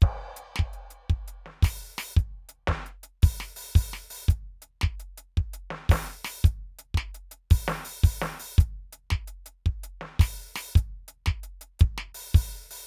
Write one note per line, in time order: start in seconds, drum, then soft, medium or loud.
0.01 kick loud
0.01 hi-hat pedal medium
0.01 crash loud
0.37 closed hi-hat loud
0.56 kick medium
0.56 snare loud
0.73 closed hi-hat medium
0.91 closed hi-hat loud
1.10 kick medium
1.28 closed hi-hat loud
1.46 snare soft
1.63 open hi-hat loud
1.63 kick loud
1.63 snare loud
1.98 open hi-hat loud
1.98 snare loud
2.13 kick loud
2.13 hi-hat pedal medium
2.19 closed hi-hat medium
2.49 closed hi-hat loud
2.68 kick medium
2.68 snare loud
2.86 closed hi-hat medium
3.03 closed hi-hat loud
3.22 open hi-hat loud
3.22 kick loud
3.40 snare loud
3.56 open hi-hat loud
3.75 open hi-hat loud
3.75 kick loud
3.93 snare medium
4.10 open hi-hat loud
4.24 hi-hat pedal soft
4.29 closed hi-hat loud
4.29 kick loud
4.62 closed hi-hat loud
4.81 kick medium
4.81 snare loud
5.00 closed hi-hat loud
5.18 closed hi-hat loud
5.37 kick medium
5.54 closed hi-hat loud
5.71 snare medium
5.89 open hi-hat loud
5.89 kick loud
5.89 snare loud
6.25 open hi-hat loud
6.25 snare loud
6.42 closed hi-hat loud
6.42 kick loud
6.42 hi-hat pedal soft
6.79 closed hi-hat loud
6.95 kick medium
6.95 snare loud
7.15 closed hi-hat loud
7.31 closed hi-hat loud
7.51 open hi-hat loud
7.51 kick loud
7.68 snare loud
7.85 open hi-hat loud
8.04 open hi-hat loud
8.04 kick loud
8.22 snare loud
8.40 open hi-hat loud
8.55 kick loud
8.55 hi-hat pedal soft
8.60 closed hi-hat loud
8.93 closed hi-hat loud
9.10 kick medium
9.10 snare loud
9.28 closed hi-hat loud
9.46 closed hi-hat loud
9.66 kick medium
9.84 closed hi-hat loud
10.01 snare medium
10.20 open hi-hat loud
10.20 kick loud
10.20 snare loud
10.56 open hi-hat loud
10.56 snare loud
10.72 kick loud
10.72 hi-hat pedal soft
10.77 closed hi-hat loud
11.08 closed hi-hat loud
11.26 kick medium
11.26 snare loud
11.43 closed hi-hat loud
11.61 closed hi-hat loud
11.80 closed hi-hat loud
11.80 kick loud
11.98 snare loud
12.15 open hi-hat loud
12.35 open hi-hat loud
12.35 kick loud
12.71 open hi-hat loud